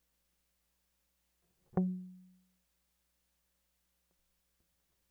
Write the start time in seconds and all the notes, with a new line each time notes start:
1.78 F#3